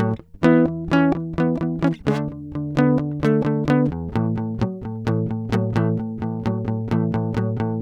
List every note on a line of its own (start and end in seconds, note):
0.00 0.19 A2
0.00 0.18 F#3
0.00 0.16 G3
0.45 0.67 E3
0.45 0.72 B3
0.45 0.90 E4
0.68 0.92 E3
0.93 1.17 E3
0.93 1.15 C#4
1.17 1.37 E3
1.39 1.60 E3
1.39 1.60 B3
1.62 1.83 E3
1.62 1.80 B3
1.84 1.99 E3
1.84 1.93 C4
2.08 2.30 D3
2.08 2.31 A3
2.08 2.75 D4
2.30 2.54 D3
2.54 2.78 D3
2.54 2.75 A3
2.79 2.99 D3
2.79 2.99 B3
2.99 3.23 D3
2.99 3.14 B3
3.25 3.45 D3
3.25 3.45 A3
3.25 3.68 D4
3.46 3.69 D3
3.46 3.68 A3
3.69 3.94 D3
3.69 3.92 B3
3.94 4.13 E2
4.17 4.39 A2
4.17 4.37 E3
4.38 4.71 A2
4.38 4.56 E3
4.38 4.59 A3
4.64 4.91 F#3
4.64 4.83 F#3
4.83 5.08 A2
4.83 4.97 F#3
5.08 5.31 A2
5.08 5.33 E3
5.08 5.55 A3
5.32 5.54 A2
5.54 5.77 A2
5.54 5.79 F#3
5.54 5.72 A3
5.77 5.99 A2
5.77 5.99 E3
5.77 6.21 A3
5.99 6.23 A2
5.99 6.23 E3
6.24 6.47 A2
6.24 6.49 E3
6.47 6.70 A2
6.47 6.67 F#3
6.47 6.65 G3
6.68 6.92 A2
6.68 6.85 F#3
6.68 6.76 F#3
6.93 7.15 A2
6.93 7.17 E3
6.93 7.17 A3
7.16 7.35 A2
7.16 7.34 E3
7.33 7.61 A2
7.33 7.41 A#3
7.40 7.53 F#3
7.40 7.58 F#3
7.62 7.82 A2
7.62 7.82 E3